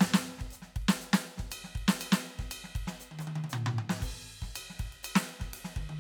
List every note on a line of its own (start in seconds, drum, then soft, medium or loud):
0.01 snare loud
0.01 hi-hat pedal medium
0.14 snare loud
0.19 cross-stick medium
0.25 snare soft
0.39 kick soft
0.39 snare soft
0.51 hi-hat pedal medium
0.51 ride bell soft
0.63 snare soft
0.77 kick soft
0.77 ride medium
0.82 kick soft
0.89 snare loud
1.01 hi-hat pedal medium
1.01 ride soft
1.14 snare loud
1.38 kick soft
1.38 snare soft
1.51 hi-hat pedal medium
1.51 ride bell loud
1.65 snare soft
1.76 kick soft
1.76 ride soft
1.89 snare loud
2.00 hi-hat pedal medium
2.00 ride bell loud
2.13 snare loud
2.19 snare soft
2.39 kick soft
2.39 snare soft
2.51 hi-hat pedal medium
2.51 ride bell loud
2.65 snare soft
2.76 kick soft
2.76 ride medium
2.84 kick soft
2.84 snare medium
3.01 hi-hat pedal medium
3.12 high tom medium
3.19 hi-hat pedal medium
3.19 high tom medium
3.28 high tom loud
3.36 high tom loud
3.45 high tom medium
3.50 hi-hat pedal medium
3.50 mid tom loud
3.65 hi-hat pedal soft
3.65 mid tom loud
3.79 mid tom medium
3.90 snare medium
4.00 kick soft
4.00 snare soft
4.00 hi-hat pedal medium
4.00 crash medium
4.08 kick soft
4.42 kick soft
4.42 snare soft
4.56 hi-hat pedal medium
4.56 ride bell loud
4.71 snare soft
4.80 kick soft
4.80 snare soft
4.80 ride medium
4.85 kick soft
4.85 snare soft
4.93 ride medium
5.04 hi-hat pedal medium
5.04 ride bell loud
5.16 snare loud
5.23 snare soft
5.30 ride soft
5.40 kick soft
5.40 snare soft
5.54 hi-hat pedal medium
5.54 ride loud
5.65 snare medium
5.77 kick soft
5.77 high tom medium
5.90 high tom medium